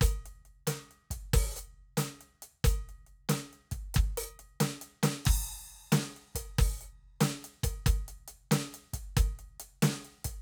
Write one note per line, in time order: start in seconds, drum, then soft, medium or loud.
0.01 closed hi-hat loud
0.01 kick loud
0.26 closed hi-hat soft
0.45 closed hi-hat soft
0.67 snare medium
0.67 closed hi-hat loud
0.91 closed hi-hat soft
1.10 kick medium
1.10 closed hi-hat medium
1.33 kick loud
1.33 open hi-hat loud
1.56 hi-hat pedal loud
1.97 closed hi-hat loud
1.97 snare loud
2.21 closed hi-hat soft
2.42 closed hi-hat medium
2.64 closed hi-hat loud
2.64 kick loud
2.89 closed hi-hat soft
3.06 closed hi-hat soft
3.29 snare loud
3.29 closed hi-hat loud
3.53 closed hi-hat soft
3.71 kick medium
3.71 closed hi-hat medium
3.94 kick loud
3.94 closed hi-hat loud
4.17 open hi-hat loud
4.22 hi-hat pedal soft
4.39 closed hi-hat soft
4.60 snare loud
4.60 closed hi-hat loud
4.81 closed hi-hat medium
5.03 snare loud
5.03 closed hi-hat loud
5.25 kick loud
5.25 crash loud
5.92 snare loud
5.92 closed hi-hat loud
6.16 closed hi-hat soft
6.35 kick medium
6.35 closed hi-hat loud
6.58 kick loud
6.58 open hi-hat loud
6.81 hi-hat pedal soft
6.81 open hi-hat soft
7.20 closed hi-hat loud
7.20 snare loud
7.44 closed hi-hat medium
7.63 kick loud
7.63 closed hi-hat loud
7.86 kick loud
7.86 closed hi-hat loud
8.08 closed hi-hat medium
8.28 closed hi-hat medium
8.51 snare loud
8.51 closed hi-hat loud
8.74 closed hi-hat medium
8.93 kick medium
8.93 closed hi-hat medium
9.17 kick loud
9.17 closed hi-hat loud
9.39 closed hi-hat soft
9.60 closed hi-hat medium
9.82 snare loud
9.82 closed hi-hat loud
10.04 closed hi-hat soft
10.24 kick medium
10.24 closed hi-hat loud